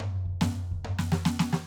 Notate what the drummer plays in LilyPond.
\new DrumStaff \drummode { \time 4/4 \tempo 4 = 144 \tuplet 3/2 { tomfh8 r8 bd8 <sn tomfh>8 r8 bd8 tomfh8 sn8 sn8 sn8 sn8 sn8 } | }